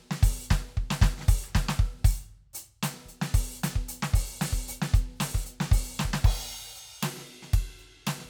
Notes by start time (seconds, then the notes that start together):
0.11 snare
0.23 open hi-hat, kick
0.38 cross-stick
0.45 hi-hat pedal
0.51 kick, snare
0.69 snare
0.77 kick
0.91 snare
1.02 kick, snare
1.18 snare
1.21 snare
1.28 open hi-hat, kick
1.44 cross-stick, hi-hat pedal
1.48 snare
1.51 snare
1.55 kick, snare
1.69 snare
1.79 kick
2.01 kick
2.05 open hi-hat, kick
2.54 closed hi-hat, hi-hat pedal
2.83 closed hi-hat, snare
2.94 snare
2.98 snare
3.01 snare
3.03 kick, snare
3.09 closed hi-hat
3.22 snare
3.34 open hi-hat, kick
3.59 hi-hat pedal
3.64 closed hi-hat, snare
3.76 kick
3.89 closed hi-hat
4.03 snare
4.14 open hi-hat, kick
4.41 open hi-hat, snare
4.53 kick
4.68 open hi-hat, kick, hi-hat pedal
4.82 snare
4.94 closed hi-hat, kick
5.16 hi-hat pedal
5.20 open hi-hat, snare
5.34 kick, snare
5.39 snare
5.44 closed hi-hat, snare, hi-hat pedal
5.60 snare
5.70 open hi-hat, kick, snare
5.93 snare
5.99 snare, hi-hat pedal
6.05 kick
6.14 snare
6.25 kick, crash
6.75 hi-hat pedal
7.03 snare, ride
7.16 snare
7.20 snare
7.28 ride
7.43 snare
7.54 kick, ride bell
7.79 hi-hat pedal, ride bell
8.07 snare, ride bell
8.20 snare
8.25 kick